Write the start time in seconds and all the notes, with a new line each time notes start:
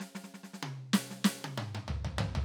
0.06 snare
0.15 snare
0.24 snare
0.34 snare
0.43 snare
0.63 high tom
0.93 snare
1.11 snare
1.24 snare
1.44 high tom
1.58 mid tom
1.75 mid tom
1.88 floor tom
2.05 floor tom
2.18 floor tom
2.35 floor tom